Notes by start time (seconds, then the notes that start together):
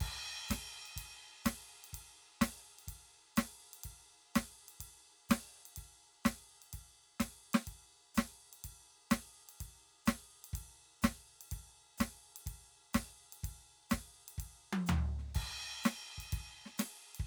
0.01 kick, ride
0.49 kick, snare, hi-hat pedal, ride
0.86 ride
0.97 kick, ride
1.45 kick, snare, hi-hat pedal, ride
1.85 ride
1.94 kick, ride
2.42 kick, snare, hi-hat pedal, ride
2.79 ride
2.88 kick, ride
3.37 kick, snare, hi-hat pedal, ride
3.74 ride
3.84 kick, ride
4.36 kick, snare, hi-hat pedal, ride
4.69 ride
4.80 kick, ride
5.29 kick, snare, hi-hat pedal, ride
5.66 ride
5.77 kick, ride
6.25 kick, snare, hi-hat pedal, ride
6.62 ride
6.74 kick, ride
7.20 kick, snare, hi-hat pedal, ride
7.54 snare, ride
7.67 kick, ride
8.15 kick, snare, hi-hat pedal, ride
8.53 ride
8.65 kick, ride
9.11 kick, snare, hi-hat pedal, ride
9.49 ride
9.58 kick, hi-hat pedal, ride
10.06 kick, snare, hi-hat pedal, ride
10.45 ride
10.54 kick, hi-hat pedal, ride
11.03 kick, snare, hi-hat pedal, ride
11.41 ride
11.47 hi-hat pedal
11.52 kick, ride
11.98 kick, snare, hi-hat pedal, ride
12.37 ride
12.47 kick, ride
12.94 kick, snare, hi-hat pedal, ride
13.33 ride
13.44 kick, ride
13.90 kick, snare, hi-hat pedal, ride
14.29 ride
14.38 kick, ride
14.73 high tom
14.87 floor tom, hi-hat pedal
15.19 snare
15.24 snare
15.29 snare
15.35 kick, ride
15.84 snare, hi-hat pedal, ride
16.18 kick, ride
16.33 kick, ride
16.66 snare
16.78 snare, hi-hat pedal, ride
17.15 ride
17.20 kick